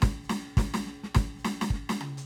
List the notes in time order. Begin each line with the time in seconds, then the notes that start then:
0.01 kick, snare
0.23 hi-hat pedal
0.30 snare
0.57 kick, snare
0.74 snare, hi-hat pedal
0.86 snare
1.04 snare
1.15 kick, snare
1.34 snare
1.39 hi-hat pedal
1.45 snare
1.61 snare
1.70 kick, snare
1.89 snare, hi-hat pedal
2.01 high tom
2.17 closed hi-hat